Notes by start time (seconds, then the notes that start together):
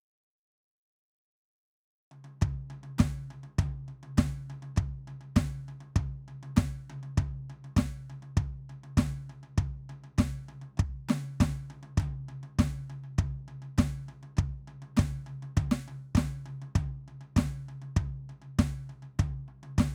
2.11 mid tom
2.24 mid tom
2.42 kick, mid tom
2.70 mid tom
2.83 mid tom
2.98 kick, snare, mid tom
3.31 mid tom
3.43 mid tom
3.59 kick, mid tom
3.88 mid tom
4.03 mid tom
4.18 kick, snare, mid tom
4.50 mid tom
4.62 mid tom
4.76 kick, mid tom
5.08 mid tom
5.21 mid tom
5.36 kick, snare, mid tom
5.68 mid tom
5.81 mid tom
5.96 kick, mid tom
6.28 mid tom
6.43 mid tom
6.57 kick, snare, mid tom
6.90 mid tom
7.03 mid tom
7.18 kick, mid tom
7.50 mid tom
7.64 mid tom
7.77 kick, snare, mid tom
8.10 mid tom
8.22 mid tom
8.37 kick, mid tom
8.70 mid tom
8.84 mid tom
8.97 kick, snare, mid tom
9.30 mid tom
9.43 mid tom
9.58 kick, mid tom
9.89 mid tom
10.04 mid tom
10.18 kick, snare, mid tom
10.49 mid tom
10.62 mid tom
10.77 kick, mid tom
11.09 snare, mid tom
11.40 kick, snare, mid tom
11.70 mid tom
11.83 mid tom
11.97 kick, mid tom
12.29 mid tom
12.43 mid tom
12.59 kick, snare, mid tom
12.90 mid tom
13.04 mid tom
13.18 kick, mid tom
13.48 mid tom
13.62 mid tom
13.78 kick, snare, mid tom
14.09 mid tom
14.23 mid tom
14.37 kick, mid tom
14.68 mid tom
14.82 mid tom
14.97 kick, snare, mid tom
15.26 mid tom
15.43 mid tom
15.57 kick, mid tom
15.71 snare
15.88 mid tom
16.15 kick, snare, mid tom
16.46 mid tom
16.62 mid tom
16.75 kick, mid tom
17.08 mid tom
17.21 mid tom
17.36 kick, snare, mid tom
17.69 mid tom
17.82 mid tom
17.96 kick, mid tom
18.29 mid tom
18.42 mid tom
18.59 kick, snare, mid tom
18.89 mid tom
19.02 mid tom
19.19 kick, mid tom
19.48 mid tom
19.63 mid tom
19.78 kick, snare, mid tom